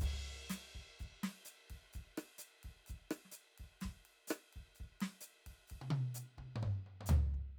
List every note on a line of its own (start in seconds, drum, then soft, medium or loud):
0.01 kick soft
0.01 hi-hat pedal soft
0.01 ride medium
0.09 kick soft
0.50 snare medium
0.50 hi-hat pedal medium
0.50 ride medium
0.75 kick soft
1.00 kick soft
1.00 hi-hat pedal soft
1.06 kick soft
1.24 snare medium
1.24 ride medium
1.46 hi-hat pedal medium
1.46 ride soft
1.70 kick soft
1.70 ride soft
1.93 kick soft
1.93 hi-hat pedal soft
1.93 ride soft
2.01 kick soft
2.18 cross-stick medium
2.18 ride medium
2.39 hi-hat pedal medium
2.39 ride soft
2.64 kick soft
2.64 ride soft
2.70 kick soft
2.87 kick soft
2.87 hi-hat pedal soft
2.87 ride soft
2.95 kick soft
3.11 cross-stick medium
3.11 ride medium
3.26 snare soft
3.32 hi-hat pedal medium
3.32 ride soft
3.58 kick soft
3.58 ride soft
3.81 snare medium
3.81 hi-hat pedal soft
3.81 ride medium
3.85 kick soft
3.91 kick soft
4.06 ride soft
4.28 cross-stick medium
4.28 hi-hat pedal medium
4.28 ride medium
4.53 kick soft
4.53 ride soft
4.75 hi-hat pedal soft
4.75 ride soft
4.81 kick soft
4.86 kick soft
5.01 snare medium
5.01 ride medium
5.21 hi-hat pedal medium
5.21 ride soft
5.47 kick soft
5.47 ride soft
5.68 kick soft
5.68 hi-hat pedal soft
5.68 ride soft
5.82 high tom medium
5.91 high tom loud
6.15 hi-hat pedal medium
6.15 high tom soft
6.38 kick soft
6.38 high tom soft
6.56 mid tom medium
6.63 kick soft
6.63 mid tom medium
6.87 mid tom soft
7.01 mid tom medium
7.07 floor tom loud
7.07 hi-hat pedal medium
7.35 kick soft